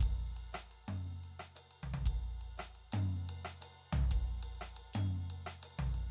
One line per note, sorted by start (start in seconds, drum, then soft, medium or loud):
0.01 kick medium
0.01 ride loud
0.37 ride medium
0.53 cross-stick medium
0.53 hi-hat pedal medium
0.72 ride medium
0.88 mid tom loud
0.88 ride medium
1.24 ride medium
1.40 cross-stick medium
1.56 hi-hat pedal medium
1.56 ride loud
1.71 ride medium
1.83 floor tom medium
1.94 floor tom medium
2.06 kick medium
2.06 ride loud
2.41 ride medium
2.58 cross-stick medium
2.58 hi-hat pedal medium
2.58 ride soft
2.76 ride medium
2.93 mid tom loud
2.93 ride loud
3.29 ride loud
3.45 cross-stick medium
3.61 hi-hat pedal medium
3.61 ride loud
3.93 floor tom loud
4.11 kick medium
4.11 ride loud
4.43 ride loud
4.61 cross-stick medium
4.61 hi-hat pedal medium
4.77 ride loud
4.94 mid tom loud
4.94 ride bell loud
5.30 ride loud
5.47 cross-stick medium
5.63 hi-hat pedal medium
5.63 ride loud
5.79 floor tom loud
5.95 ride medium